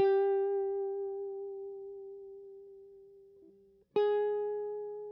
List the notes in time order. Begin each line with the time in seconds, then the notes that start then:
0.00 G4
3.98 G#4